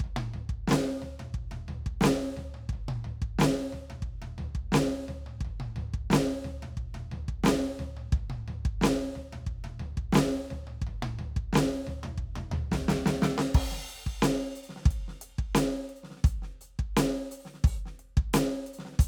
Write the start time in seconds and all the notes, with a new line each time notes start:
0.00 kick, floor tom
0.16 high tom
0.34 floor tom
0.49 kick
0.67 snare
0.71 snare
1.02 floor tom
1.19 mid tom
1.34 kick
1.51 mid tom
1.68 floor tom
1.86 kick
2.01 snare
2.04 snare
2.37 floor tom
2.54 high tom
2.69 kick, floor tom
2.88 high tom
3.04 floor tom
3.22 kick
3.39 snare
3.41 snare
3.72 floor tom
3.90 mid tom
4.02 kick
4.22 mid tom
4.38 floor tom
4.55 kick
4.72 snare
4.74 snare
5.08 floor tom
5.26 high tom
5.40 kick
5.45 floor tom
5.60 high tom
5.76 floor tom
5.93 kick
6.10 snare
6.13 snare
6.44 floor tom
6.62 mid tom
6.77 kick
6.94 mid tom
7.11 floor tom
7.28 kick
7.44 snare
7.46 snare
7.79 floor tom
7.97 high tom
8.12 kick, floor tom
8.30 high tom
8.48 floor tom
8.65 kick
8.81 snare
8.84 snare
9.15 floor tom
9.33 mid tom
9.46 kick
9.58 kick
9.64 mid tom
9.79 floor tom
9.97 kick
10.12 snare
10.15 snare
10.50 floor tom
10.67 high tom
10.82 kick
10.87 floor tom
11.02 high tom
11.19 floor tom
11.36 kick
11.53 snare
11.55 snare
11.87 floor tom
12.03 mid tom
12.17 kick
12.36 mid tom
12.51 floor tom
12.71 kick, snare
12.87 kick, snare
13.06 snare
13.22 snare
13.38 snare
13.54 kick, crash
13.71 snare
13.77 snare
13.88 closed hi-hat
14.06 kick, snare
14.22 closed hi-hat, snare
14.55 closed hi-hat
14.63 closed hi-hat
14.69 snare
14.76 snare
14.82 kick, snare
14.90 closed hi-hat
15.08 snare
15.21 closed hi-hat
15.38 kick
15.55 closed hi-hat, snare
15.89 closed hi-hat
15.96 closed hi-hat
16.03 snare
16.10 snare
16.16 snare
16.24 closed hi-hat, kick
16.42 snare
16.61 closed hi-hat
16.79 kick
16.97 closed hi-hat, snare
17.31 closed hi-hat
17.39 open hi-hat
17.45 snare
17.54 snare
17.64 open hi-hat, kick
17.74 hi-hat pedal
17.86 snare
17.99 closed hi-hat
18.17 kick
18.33 closed hi-hat, snare
18.66 closed hi-hat
18.73 closed hi-hat
18.79 snare
18.85 snare
18.92 snare
18.99 closed hi-hat, kick